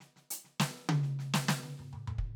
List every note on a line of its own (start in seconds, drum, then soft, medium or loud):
0.00 snare soft
0.16 snare soft
0.30 closed hi-hat loud
0.44 snare soft
0.60 snare loud
0.74 snare soft
0.89 high tom loud
1.03 snare soft
1.19 snare soft
1.34 snare loud
1.48 snare loud
1.63 high tom medium
1.79 mid tom soft
1.93 mid tom medium
2.08 mid tom medium
2.18 kick soft